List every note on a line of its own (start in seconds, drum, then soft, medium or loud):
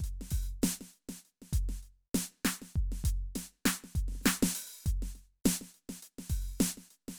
0.01 closed hi-hat medium
0.01 kick soft
0.21 snare soft
0.31 open hi-hat medium
0.31 kick medium
0.62 closed hi-hat loud
0.62 snare loud
0.62 hi-hat pedal medium
0.81 snare soft
0.94 closed hi-hat soft
1.09 closed hi-hat medium
1.09 snare soft
1.25 closed hi-hat soft
1.42 snare soft
1.53 closed hi-hat loud
1.53 kick medium
1.69 snare soft
1.83 closed hi-hat soft
2.15 closed hi-hat loud
2.15 snare loud
2.45 closed hi-hat loud
2.45 snare loud
2.62 snare soft
2.75 kick medium
2.75 closed hi-hat soft
2.92 snare soft
3.04 closed hi-hat loud
3.04 kick medium
3.36 closed hi-hat loud
3.36 snare medium
3.66 closed hi-hat loud
3.66 snare loud
3.84 snare soft
3.96 closed hi-hat medium
3.96 kick medium
4.08 snare soft
4.12 snare soft
4.15 snare soft
4.22 snare soft
4.22 hi-hat pedal medium
4.26 snare loud
4.43 snare loud
4.55 open hi-hat loud
4.84 closed hi-hat medium
4.84 kick medium
4.84 hi-hat pedal medium
5.03 snare soft
5.15 snare soft
5.15 closed hi-hat soft
5.45 closed hi-hat loud
5.45 snare loud
5.45 hi-hat pedal medium
5.62 snare soft
5.75 closed hi-hat soft
5.90 snare soft
5.90 closed hi-hat soft
6.03 closed hi-hat medium
6.19 snare soft
6.30 open hi-hat medium
6.30 kick medium
6.59 closed hi-hat loud
6.59 snare loud
6.59 hi-hat pedal medium
6.78 snare soft
6.91 closed hi-hat soft
7.09 snare soft
7.09 closed hi-hat soft